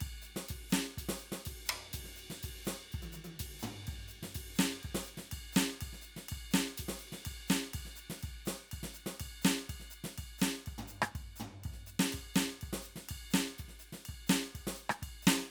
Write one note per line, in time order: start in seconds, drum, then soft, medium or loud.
0.01 kick soft
0.01 ride bell loud
0.08 kick soft
0.22 hi-hat pedal medium
0.22 ride soft
0.36 snare medium
0.49 kick soft
0.49 ride loud
0.57 kick soft
0.70 snare medium
0.70 hi-hat pedal medium
0.98 kick soft
0.98 ride loud
1.09 snare medium
1.18 hi-hat pedal medium
1.18 ride soft
1.32 snare medium
1.46 kick soft
1.46 ride loud
1.53 kick soft
1.66 hi-hat pedal medium
1.66 floor tom loud
1.93 kick soft
1.93 ride loud
2.00 kick soft
2.05 snare soft
2.16 hi-hat pedal medium
2.16 ride soft
2.30 snare medium
2.43 kick soft
2.43 ride loud
2.50 kick soft
2.65 snare medium
2.65 hi-hat pedal medium
2.92 kick soft
2.92 ride medium
3.01 kick soft
3.01 high tom medium
3.12 hi-hat pedal medium
3.12 high tom medium
3.25 closed hi-hat soft
3.25 high tom medium
3.40 kick soft
3.40 ride loud
3.46 kick soft
3.60 floor tom loud
3.60 hi-hat pedal medium
3.87 kick soft
3.87 ride bell medium
3.95 kick soft
3.99 snare soft
4.08 hi-hat pedal medium
4.08 ride soft
4.23 snare medium
4.35 kick soft
4.35 ride loud
4.56 snare loud
4.56 hi-hat pedal medium
4.83 kick soft
4.83 ride bell medium
4.95 snare loud
5.03 hi-hat pedal medium
5.03 ride medium
5.18 snare medium
5.32 kick soft
5.32 ride bell loud
5.39 kick soft
5.53 snare loud
5.53 hi-hat pedal medium
5.81 kick soft
5.81 ride bell loud
5.88 kick soft
5.93 snare soft
6.02 hi-hat pedal medium
6.06 ride soft
6.17 snare medium
6.29 kick soft
6.29 ride bell loud
6.51 snare loud
6.51 hi-hat pedal medium
6.78 kick soft
6.78 ride loud
6.85 kick soft
6.85 snare medium
6.99 hi-hat pedal medium
6.99 ride soft
7.13 snare medium
7.26 kick soft
7.26 ride bell loud
7.33 kick soft
7.48 snare medium
7.48 hi-hat pedal medium
7.74 kick soft
7.74 ride bell loud
7.81 kick soft
7.86 snare soft
7.96 hi-hat pedal medium
7.96 ride soft
8.10 snare medium
8.19 hi-hat pedal soft
8.19 ride bell medium
8.24 kick soft
8.30 kick soft
8.46 snare medium
8.46 hi-hat pedal medium
8.68 hi-hat pedal soft
8.68 ride bell medium
8.73 kick soft
8.83 snare medium
8.94 hi-hat pedal medium
8.94 ride soft
9.06 snare medium
9.20 kick soft
9.20 ride bell loud
9.27 kick soft
9.42 snare loud
9.42 hi-hat pedal medium
9.70 kick soft
9.70 ride bell medium
9.75 kick soft
9.80 snare soft
9.91 hi-hat pedal medium
9.91 ride soft
10.04 snare medium
10.12 hi-hat pedal soft
10.18 kick soft
10.18 ride bell medium
10.39 snare medium
10.39 hi-hat pedal medium
10.66 kick soft
10.66 ride bell medium
10.73 kick soft
10.78 floor tom loud
10.88 hi-hat pedal medium
10.88 ride bell soft
11.02 cross-stick medium
11.15 kick soft
11.15 ride bell medium
11.22 kick soft
11.36 hi-hat pedal medium
11.40 floor tom loud
11.64 kick soft
11.64 ride bell medium
11.72 kick soft
11.72 snare soft
11.81 snare soft
11.87 hi-hat pedal medium
11.87 ride soft
12.00 snare medium
12.13 kick soft
12.13 ride bell loud
12.35 snare loud
12.35 hi-hat pedal medium
12.61 kick soft
12.61 ride bell medium
12.69 kick soft
12.73 snare medium
12.82 hi-hat pedal medium
12.82 ride medium
12.96 snare medium
13.09 kick soft
13.09 ride bell loud
13.31 snare loud
13.31 hi-hat pedal medium
13.58 kick soft
13.58 ride medium
13.65 kick soft
13.65 snare soft
13.79 hi-hat pedal medium
13.79 ride soft
13.93 snare medium
14.06 kick soft
14.06 ride bell medium
14.27 snare loud
14.27 hi-hat pedal medium
14.55 kick soft
14.55 ride bell medium
14.60 kick soft
14.67 snare medium
14.75 hi-hat pedal medium
14.75 ride soft
14.90 cross-stick medium
15.03 kick soft
15.03 ride bell medium
15.09 kick soft
15.23 hi-hat pedal medium
15.27 snare loud